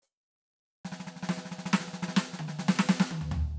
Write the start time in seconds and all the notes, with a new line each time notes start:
0.00 hi-hat pedal
0.85 snare
0.92 snare
1.00 snare
1.07 snare
1.16 snare
1.23 snare
1.29 snare
1.38 snare
1.45 snare
1.52 snare
1.59 snare
1.66 snare
1.73 snare
1.81 snare
1.88 snare
1.94 snare
2.03 snare
2.09 snare
2.17 snare
2.34 snare
2.39 high tom
2.48 snare
2.59 snare
2.69 snare
2.79 snare
2.89 snare
3.00 snare
3.11 high tom
3.21 floor tom
3.32 floor tom